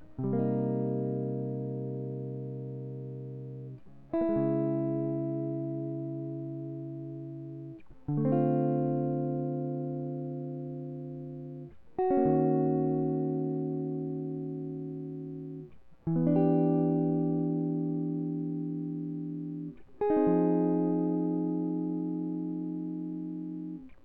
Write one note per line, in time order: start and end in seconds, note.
0.20 3.78 C3
0.25 3.81 G3
0.34 3.69 A#3
0.39 3.79 D#4
4.14 7.81 E4
4.22 4.29 B3
4.30 7.67 G#3
4.38 7.75 C#3
8.10 11.70 D3
8.18 10.76 A3
8.25 11.67 C4
8.33 11.71 F4
11.99 15.70 F#4
12.11 15.65 C#4
12.18 14.21 A#3
12.27 15.67 D#3
16.08 19.74 E3
16.16 19.80 B3
16.27 19.74 D4
16.36 19.74 G4
20.02 23.63 G#4
20.11 23.80 D#4
20.17 23.93 C4
20.28 23.80 F3